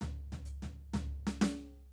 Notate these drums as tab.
HH |---p--------|
SD |o-o-o-o-oo--|
FT |o-o-o-o-----|